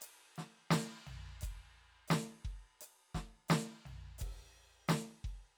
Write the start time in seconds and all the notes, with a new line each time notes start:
0.01 hi-hat pedal, ride
0.21 ride
0.36 snare, ride
0.71 snare, hi-hat pedal, ride
1.07 floor tom, ride
1.41 kick, hi-hat pedal, ride
1.75 ride
2.08 snare, hi-hat pedal, ride
2.45 kick, ride
2.81 hi-hat pedal, ride
3.15 kick, snare, ride
3.49 snare, hi-hat pedal, ride
3.85 floor tom, ride
4.18 kick, hi-hat pedal, crash
4.88 snare, hi-hat pedal, ride
5.24 kick, ride